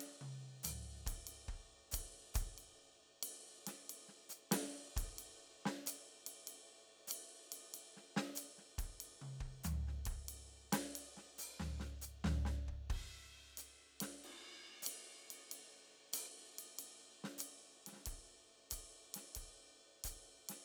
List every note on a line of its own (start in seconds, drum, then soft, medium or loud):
0.01 ride medium
0.21 high tom medium
0.64 floor tom soft
0.64 hi-hat pedal loud
0.64 ride medium
1.07 kick soft
1.07 ride medium
1.27 ride medium
1.49 kick soft
1.92 kick soft
1.92 hi-hat pedal loud
1.92 ride loud
2.35 open hi-hat medium
2.35 kick medium
2.35 ride medium
2.58 ride soft
3.23 ride loud
3.67 snare soft
3.67 ride medium
3.90 ride medium
4.08 snare soft
4.30 hi-hat pedal medium
4.52 snare medium
4.52 ride loud
4.97 kick soft
4.97 ride medium
5.19 ride medium
5.66 snare medium
5.87 hi-hat pedal loud
5.87 ride medium
6.27 ride medium
6.48 ride medium
7.08 hi-hat pedal medium
7.08 ride loud
7.52 ride medium
7.74 ride medium
7.97 snare soft
8.17 snare medium
8.35 hi-hat pedal medium
8.35 ride medium
8.58 snare soft
8.78 kick soft
8.78 ride medium
9.01 ride medium
9.22 high tom medium
9.41 kick soft
9.64 floor tom medium
9.64 hi-hat pedal medium
9.88 snare soft
10.06 kick soft
10.06 ride medium
10.29 ride medium
10.73 snare medium
10.73 ride loud
10.96 ride medium
11.17 snare soft
11.39 hi-hat pedal medium
11.60 snare soft
11.60 floor tom medium
11.80 snare soft
12.02 hi-hat pedal medium
12.24 snare medium
12.24 floor tom loud
12.45 snare soft
12.68 kick soft
12.90 kick soft
12.90 crash soft
13.58 hi-hat pedal medium
13.58 ride medium
14.01 snare soft
14.01 ride medium
14.24 ride medium
14.83 hi-hat pedal loud
14.87 ride loud
15.31 ride medium
15.52 ride medium
16.13 hi-hat pedal medium
16.13 ride loud
16.59 ride medium
16.79 ride medium
17.24 snare soft
17.38 hi-hat pedal medium
17.38 ride medium
17.87 snare soft
17.87 ride medium
17.92 snare soft
17.96 snare soft
17.99 snare soft
18.04 kick soft
18.04 snare soft
18.04 ride medium
18.71 kick soft
18.71 hi-hat pedal medium
18.71 ride medium
19.15 snare soft
19.15 ride medium
19.35 kick soft
19.35 ride medium
20.04 kick soft
20.04 hi-hat pedal medium
20.04 ride medium
20.49 snare soft
20.49 ride medium